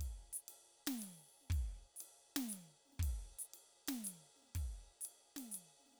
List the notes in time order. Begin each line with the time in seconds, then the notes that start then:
0.01 ride
0.33 hi-hat pedal
0.48 ride
0.87 snare, ride
0.98 hi-hat pedal
1.02 ride
1.41 snare
1.50 kick, ride
1.96 hi-hat pedal
2.01 ride
2.36 snare, ride
2.49 hi-hat pedal
2.53 ride
2.86 snare
2.89 snare
2.92 snare
2.99 kick, snare, ride
3.39 hi-hat pedal
3.54 ride
3.88 snare, ride
4.04 hi-hat pedal, ride
4.36 snare
4.42 snare
4.55 kick, ride
5.01 hi-hat pedal
5.05 ride
5.36 snare, ride
5.52 hi-hat pedal, ride
5.80 snare
5.86 snare
5.92 snare
5.94 snare